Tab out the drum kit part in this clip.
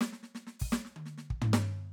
Hi-hat    |-----op-x-------|
Snare     |oggog-og-gg--o--|
High tom  |--------o-------|
Floor tom |------------o---|
Kick      |-----o-----o----|